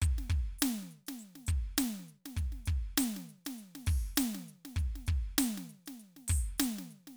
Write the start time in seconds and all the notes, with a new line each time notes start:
0.01 closed hi-hat, kick
0.18 snare
0.30 kick, open hi-hat
0.58 snare, hi-hat pedal
0.63 closed hi-hat
0.83 snare
0.91 closed hi-hat
1.06 snare, closed hi-hat
1.19 closed hi-hat
1.35 snare
1.47 closed hi-hat, kick
1.77 closed hi-hat, snare, hi-hat pedal
1.99 snare
2.08 closed hi-hat
2.25 snare, closed hi-hat
2.37 kick, closed hi-hat
2.52 snare
2.66 kick, open hi-hat
2.97 closed hi-hat, snare, hi-hat pedal
3.16 snare
3.29 closed hi-hat
3.45 snare, closed hi-hat
3.58 closed hi-hat
3.75 snare
3.86 kick, open hi-hat
4.16 closed hi-hat, snare, hi-hat pedal
4.34 snare
4.48 closed hi-hat
4.65 snare, closed hi-hat
4.76 kick, closed hi-hat
4.95 snare
5.07 kick, closed hi-hat
5.38 open hi-hat, snare, hi-hat pedal
5.57 snare
5.69 closed hi-hat
5.86 snare, closed hi-hat
5.99 closed hi-hat
6.16 snare
6.28 open hi-hat, kick
6.58 closed hi-hat, snare, hi-hat pedal
6.78 snare
6.91 closed hi-hat
7.07 snare, closed hi-hat